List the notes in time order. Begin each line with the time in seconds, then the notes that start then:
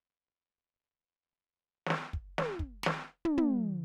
1.86 snare
1.90 snare
2.13 kick
2.38 snare, high tom
2.59 kick
2.83 snare
2.86 snare
3.24 floor tom
3.37 floor tom